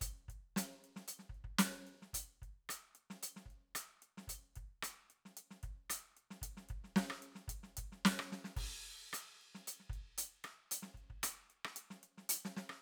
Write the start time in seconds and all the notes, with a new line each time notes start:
0.01 closed hi-hat, kick
0.28 kick, closed hi-hat
0.56 closed hi-hat, snare
0.84 closed hi-hat
0.96 snare
1.08 closed hi-hat
1.19 snare
1.29 kick
1.34 closed hi-hat
1.44 kick
1.58 closed hi-hat, snare
1.87 closed hi-hat
2.02 snare
2.13 closed hi-hat, kick
2.42 kick, closed hi-hat
2.69 closed hi-hat, cross-stick
2.95 closed hi-hat
3.10 snare
3.23 closed hi-hat
3.36 snare
3.46 kick
3.50 closed hi-hat
3.75 closed hi-hat, cross-stick
4.02 closed hi-hat
4.17 snare
4.27 closed hi-hat, kick
4.56 kick, closed hi-hat
4.83 closed hi-hat, cross-stick
5.10 closed hi-hat
5.25 snare
5.37 closed hi-hat
5.51 snare
5.63 kick, closed hi-hat
5.90 closed hi-hat, cross-stick
6.17 closed hi-hat
6.30 snare
6.42 kick, closed hi-hat
6.57 snare
6.69 kick, closed hi-hat
6.84 snare
6.96 snare
7.10 cross-stick
7.22 closed hi-hat
7.35 snare
7.48 kick, closed hi-hat
7.63 snare
7.77 kick, closed hi-hat
7.92 snare
8.05 snare
8.19 cross-stick
8.32 snare
8.44 snare
8.56 kick, crash
9.13 closed hi-hat, cross-stick
9.41 closed hi-hat
9.55 snare
9.67 closed hi-hat
9.80 snare
9.90 kick, closed hi-hat
10.18 closed hi-hat
10.44 cross-stick, closed hi-hat
10.71 closed hi-hat
10.82 snare
10.94 kick, closed hi-hat
11.10 kick
11.23 closed hi-hat, cross-stick
11.50 closed hi-hat
11.65 cross-stick
11.76 closed hi-hat
11.90 snare
12.03 closed hi-hat
12.18 snare
12.29 closed hi-hat
12.45 snare
12.57 snare
12.69 cross-stick